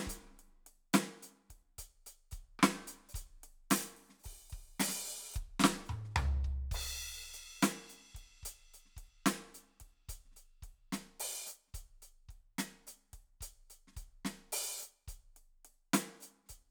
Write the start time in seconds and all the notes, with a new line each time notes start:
0.01 snare, hi-hat pedal
0.07 closed hi-hat, kick
0.28 cross-stick
0.34 snare
0.37 snare, closed hi-hat
0.67 closed hi-hat
0.94 open hi-hat, snare, hi-hat pedal
1.03 snare
1.23 closed hi-hat
1.51 kick, closed hi-hat
1.79 closed hi-hat, kick
2.07 closed hi-hat
2.32 closed hi-hat, kick
2.60 cross-stick, snare
2.88 open hi-hat
3.07 snare, hi-hat pedal
3.15 closed hi-hat, kick
3.44 closed hi-hat
3.71 open hi-hat, snare
3.81 snare
3.97 open hi-hat
4.10 snare
4.14 snare
4.18 snare, hi-hat pedal
4.24 open hi-hat, kick
4.51 kick, open hi-hat
4.80 open hi-hat, snare
4.89 snare
5.08 open hi-hat
5.35 kick, hi-hat pedal, open hi-hat
5.43 kick
5.60 snare
5.65 snare
5.73 snare
5.86 hi-hat pedal, mid tom
6.05 snare
6.10 snare
6.17 floor tom
6.45 kick
6.72 kick, hi-hat pedal, crash
6.78 kick
7.21 snare
7.34 closed hi-hat
7.63 open hi-hat, snare
7.90 closed hi-hat
8.15 kick, closed hi-hat
8.44 closed hi-hat, kick
8.74 closed hi-hat
8.86 snare
8.91 snare
8.97 kick, closed hi-hat
9.27 closed hi-hat, snare
9.55 closed hi-hat
9.81 kick, closed hi-hat
10.09 closed hi-hat, kick
10.26 snare
10.32 snare
10.35 closed hi-hat, snare
10.63 kick, closed hi-hat
10.93 closed hi-hat, snare
11.20 open hi-hat
11.47 closed hi-hat, hi-hat pedal
11.68 snare
11.75 closed hi-hat, kick
12.03 closed hi-hat
12.29 kick, closed hi-hat
12.59 closed hi-hat, snare
12.87 closed hi-hat, hi-hat pedal
13.14 kick, closed hi-hat
13.41 closed hi-hat, kick
13.71 closed hi-hat
13.88 snare
13.92 snare
13.97 closed hi-hat, kick, cross-stick
14.02 kick
14.26 snare, closed hi-hat
14.53 open hi-hat
14.80 closed hi-hat, hi-hat pedal
15.08 closed hi-hat, kick
15.37 closed hi-hat
15.65 closed hi-hat
15.94 closed hi-hat, snare
16.21 closed hi-hat, hi-hat pedal
16.46 closed hi-hat, snare
16.51 kick